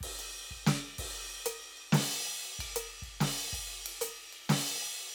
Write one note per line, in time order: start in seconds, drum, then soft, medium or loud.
0.01 kick medium
0.01 crash medium
0.19 closed hi-hat medium
0.34 ride soft
0.49 kick soft
0.49 ride soft
0.67 snare loud
0.67 ride bell loud
0.99 kick medium
0.99 crash medium
1.13 closed hi-hat soft
1.30 ride soft
1.46 closed hi-hat loud
1.62 ride bell soft
1.77 ride bell soft
1.93 snare loud
1.93 crash loud
2.28 ride soft
2.45 closed hi-hat soft
2.59 kick medium
2.59 ride bell loud
2.76 closed hi-hat loud
2.90 closed hi-hat soft
2.90 ride soft
3.02 kick soft
3.02 ride soft
3.21 snare loud
3.21 crash loud
3.53 kick medium
3.53 ride medium
3.70 closed hi-hat soft
3.86 ride loud
4.01 closed hi-hat loud
4.17 ride soft
4.33 ride bell medium
4.49 snare loud
4.49 crash loud
4.84 ride soft
5.02 closed hi-hat soft